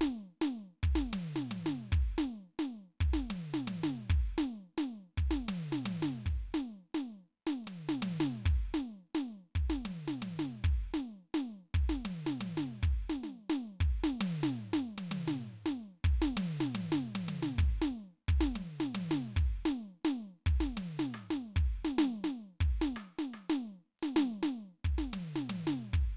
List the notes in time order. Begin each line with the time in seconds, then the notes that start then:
0.01 snare
0.41 snare
0.83 kick
0.95 snare
1.13 high tom
1.36 snare
1.51 high tom
1.66 snare
1.92 kick
2.18 snare
2.59 snare
3.00 kick
3.14 snare
3.30 high tom
3.54 snare
3.67 high tom
3.84 snare
4.10 kick
4.38 snare
4.78 snare
5.17 kick
5.31 snare
5.48 high tom
5.72 snare
5.86 high tom
6.02 snare
6.26 kick
6.52 snare, hi-hat pedal
6.94 snare
7.06 hi-hat pedal
7.47 snare
7.64 hi-hat pedal, high tom
7.89 snare
8.02 high tom
8.20 snare, hi-hat pedal
8.46 kick
8.73 snare, hi-hat pedal
9.15 snare
9.28 hi-hat pedal
9.55 kick
9.70 snare
9.83 hi-hat pedal, high tom
10.08 snare
10.22 high tom
10.36 snare, hi-hat pedal
10.64 kick
10.91 snare, hi-hat pedal
11.34 snare
11.47 hi-hat pedal
11.74 kick
11.89 snare
12.01 hi-hat pedal, high tom
12.26 snare
12.41 high tom
12.54 snare, hi-hat pedal
12.83 kick
13.08 snare, hi-hat pedal
13.24 snare
13.50 snare
13.64 hi-hat pedal
13.80 kick
14.04 snare
14.21 hi-hat pedal, high tom
14.43 snare
14.73 snare, hi-hat pedal
14.98 high tom
15.11 high tom
15.27 snare, hi-hat pedal
15.66 snare
15.80 hi-hat pedal
16.04 kick
16.22 snare
16.34 hi-hat pedal, high tom
16.60 snare
16.75 high tom
16.87 hi-hat pedal
16.92 snare
17.15 high tom
17.28 high tom
17.42 snare, hi-hat pedal
17.58 kick
17.82 snare
18.00 hi-hat pedal
18.28 kick
18.41 snare
18.55 hi-hat pedal, high tom
18.80 snare
18.95 high tom
19.09 snare, hi-hat pedal
19.36 kick
19.62 snare, hi-hat pedal
20.05 snare
20.16 hi-hat pedal
20.46 kick
20.60 snare
20.71 hi-hat pedal
20.77 high tom
20.99 snare
21.14 cross-stick
21.28 snare, hi-hat pedal
21.56 kick
21.82 snare, hi-hat pedal
21.98 snare
22.24 snare
22.37 hi-hat pedal
22.60 kick
22.81 snare
22.92 hi-hat pedal
22.96 cross-stick
23.19 snare
23.34 cross-stick
23.45 hi-hat pedal
23.50 snare
23.99 snare, hi-hat pedal
24.16 snare
24.43 snare
24.52 hi-hat pedal
24.84 kick
24.98 snare
25.06 hi-hat pedal
25.13 high tom
25.36 snare
25.49 high tom
25.62 hi-hat pedal
25.67 snare
25.93 kick